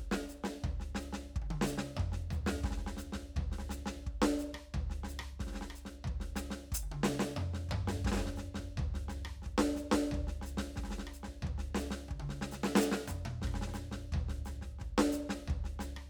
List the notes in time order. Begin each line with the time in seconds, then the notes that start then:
0.12 snare
0.28 snare, hi-hat pedal
0.43 kick, snare
0.64 kick, floor tom
0.80 snare
0.95 snare
1.00 hi-hat pedal
1.13 kick, snare
1.36 kick
1.42 high tom
1.51 high tom
1.61 snare
1.67 hi-hat pedal
1.78 snare
1.97 kick, mid tom
2.12 snare
2.31 floor tom, hi-hat pedal
2.46 snare
2.64 kick, snare
2.71 snare
2.78 snare
2.87 snare
2.99 hi-hat pedal
3.12 kick, snare
3.36 kick, floor tom
3.52 snare
3.59 snare
3.70 snare, hi-hat pedal
3.86 kick, snare
4.07 kick
4.22 snare
4.39 snare, hi-hat pedal
4.53 kick, cross-stick
4.74 kick, floor tom
4.90 snare
5.04 snare
5.09 hi-hat pedal
5.19 kick, cross-stick
5.39 kick, snare
5.47 snare
5.52 snare
5.55 snare
5.61 snare
5.70 cross-stick
5.75 hi-hat pedal
5.85 kick, snare
6.04 kick, floor tom
6.20 snare
6.36 snare, hi-hat pedal
6.51 snare
6.72 kick, hi-hat pedal
6.81 kick, high tom
6.92 high tom
7.03 snare
7.20 snare
7.37 mid tom
7.54 snare
7.69 kick, floor tom
7.88 snare
8.05 kick, snare
8.12 snare
8.19 snare
8.26 snare
8.36 snare, hi-hat pedal
8.54 snare
8.59 kick
8.77 kick, floor tom
8.94 snare
9.09 snare, hi-hat pedal
9.25 kick, cross-stick
9.42 kick, snare
9.58 snare
9.75 snare, hi-hat pedal
9.92 kick, snare
10.11 kick, floor tom
10.27 snare
10.42 snare
10.46 hi-hat pedal
10.57 kick, snare
10.76 kick, snare
10.84 snare
10.89 snare
10.91 snare
10.98 snare
11.07 cross-stick
11.14 hi-hat pedal
11.23 snare
11.28 kick
11.42 floor tom
11.47 kick
11.58 snare
11.75 snare, hi-hat pedal
11.91 snare
12.08 kick, high tom
12.20 high tom
12.29 snare
12.41 snare
12.51 snare, hi-hat pedal
12.63 snare
12.76 snare
12.81 hi-hat pedal
12.92 snare
13.08 kick, hi-hat pedal, mid tom
13.25 mid tom
13.42 kick, snare
13.47 cross-stick
13.52 cross-stick, snare
13.61 snare
13.68 snare
13.74 snare, hi-hat pedal
13.92 kick, snare
14.12 kick, floor tom
14.29 snare
14.45 snare, hi-hat pedal
14.62 kick, snare
14.79 kick, snare
14.98 snare
15.12 snare, hi-hat pedal
15.29 kick, snare
15.48 kick, floor tom
15.64 snare
15.79 snare, hi-hat pedal
15.97 cross-stick